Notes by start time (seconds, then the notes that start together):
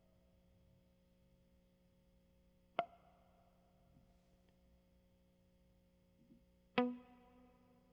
2.80 F5
6.79 B3